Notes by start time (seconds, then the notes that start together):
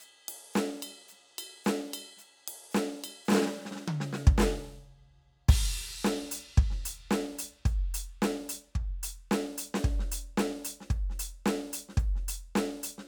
0.01 hi-hat pedal
0.29 ride
0.54 snare, hi-hat pedal
0.83 ride bell
1.09 snare, hi-hat pedal
1.39 ride bell
1.65 snare, hi-hat pedal
1.94 ride bell
2.17 snare, hi-hat pedal
2.20 snare
2.49 ride
2.72 snare, hi-hat pedal
3.05 ride bell
3.26 snare, hi-hat pedal
3.33 snare
3.36 snare
3.38 snare
3.42 snare
3.47 snare
3.53 snare
3.57 snare
3.60 snare
3.62 snare
3.64 snare
3.66 snare
3.72 snare
3.81 snare
3.89 high tom
4.01 snare
4.14 snare
4.28 kick
4.39 snare
4.41 snare
5.49 kick, crash
5.78 closed hi-hat
6.05 snare
6.32 closed hi-hat
6.58 kick, closed hi-hat
6.71 snare
6.86 closed hi-hat
7.12 snare
7.40 closed hi-hat
7.66 closed hi-hat, kick
7.95 closed hi-hat
8.23 snare
8.50 closed hi-hat
8.76 kick
9.04 closed hi-hat
9.32 snare
9.59 closed hi-hat
9.75 snare
9.85 kick, closed hi-hat
10.00 snare
10.12 closed hi-hat
10.38 snare
10.66 closed hi-hat
10.81 snare
10.91 kick, closed hi-hat
11.11 snare
11.20 closed hi-hat
11.47 snare
11.74 closed hi-hat
11.90 snare
11.98 kick, closed hi-hat
12.16 snare
12.29 closed hi-hat
12.56 snare
12.84 closed hi-hat
12.99 snare